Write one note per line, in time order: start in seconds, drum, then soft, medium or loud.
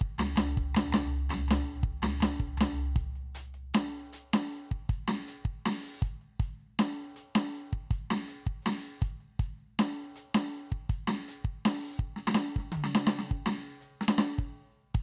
0.01 kick medium
0.01 hi-hat pedal medium
0.19 snare loud
0.19 floor tom loud
0.36 snare loud
0.36 floor tom loud
0.36 hi-hat pedal medium
0.58 kick medium
0.75 snare loud
0.75 floor tom loud
0.93 snare loud
0.93 floor tom loud
0.99 floor tom medium
1.30 snare loud
1.30 floor tom loud
1.48 snare loud
1.48 floor tom loud
1.84 kick medium
2.02 snare loud
2.02 floor tom loud
2.21 snare loud
2.21 floor tom loud
2.40 kick medium
2.58 snare loud
2.58 floor tom loud
2.96 closed hi-hat loud
2.96 kick medium
3.16 closed hi-hat soft
3.35 closed hi-hat loud
3.55 closed hi-hat soft
3.74 closed hi-hat loud
3.74 snare loud
3.94 closed hi-hat soft
4.13 closed hi-hat loud
4.33 snare loud
4.33 closed hi-hat soft
4.53 closed hi-hat medium
4.72 kick soft
4.72 closed hi-hat soft
4.90 closed hi-hat loud
4.90 kick medium
5.08 snare loud
5.28 closed hi-hat loud
5.45 kick soft
5.45 closed hi-hat soft
5.66 open hi-hat loud
5.66 snare loud
6.01 closed hi-hat loud
6.01 kick medium
6.01 hi-hat pedal medium
6.22 closed hi-hat soft
6.40 closed hi-hat loud
6.40 kick medium
6.61 closed hi-hat soft
6.80 closed hi-hat loud
6.80 snare loud
6.98 closed hi-hat soft
7.16 closed hi-hat medium
7.35 snare loud
7.35 closed hi-hat medium
7.54 closed hi-hat medium
7.73 kick soft
7.73 closed hi-hat soft
7.91 closed hi-hat loud
7.91 kick medium
8.11 snare loud
8.29 closed hi-hat medium
8.46 kick medium
8.46 closed hi-hat soft
8.62 open hi-hat loud
8.62 snare loud
8.62 hi-hat pedal soft
9.01 closed hi-hat loud
9.01 kick medium
9.01 hi-hat pedal medium
9.21 closed hi-hat soft
9.40 closed hi-hat loud
9.40 kick medium
9.59 closed hi-hat soft
9.79 closed hi-hat loud
9.79 snare loud
9.98 closed hi-hat soft
10.16 closed hi-hat medium
10.35 snare loud
10.35 closed hi-hat medium
10.54 closed hi-hat medium
10.71 kick soft
10.71 closed hi-hat soft
10.90 closed hi-hat loud
10.90 kick medium
11.08 snare loud
11.28 closed hi-hat loud
11.45 kick soft
11.45 closed hi-hat soft
11.66 open hi-hat loud
11.66 snare loud
11.99 kick medium
11.99 hi-hat pedal soft
12.17 snare medium
12.28 snare loud
12.35 snare loud
12.35 hi-hat pedal medium
12.56 kick medium
12.56 snare soft
12.65 snare soft
12.72 high tom loud
12.77 kick soft
12.84 snare loud
12.95 snare loud
13.07 snare loud
13.19 snare medium
13.31 kick medium
13.46 snare loud
13.81 hi-hat pedal soft
14.01 snare medium
14.09 snare loud
14.39 kick medium
14.95 closed hi-hat loud
14.95 kick medium